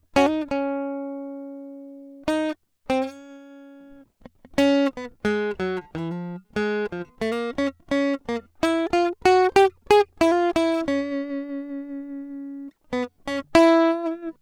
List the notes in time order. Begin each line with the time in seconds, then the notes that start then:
0.17 C#4 F#4
0.27 D#4
0.52 C#4
2.28 D#4
2.90 C4
4.59 C#4
4.98 B3
5.25 G#3
5.60 F#3
5.96 E3
6.13 F3
6.57 G#3
6.93 F3
7.22 A3
7.32 A#3
7.59 C#4
7.92 C#4
8.29 A#3
8.64 E4
8.94 F4
9.26 F#4
9.57 G4
9.91 G#4
10.22 E4
10.32 F4
10.57 E4
10.89 C#4
12.94 B3
13.28 C#4
13.55 E4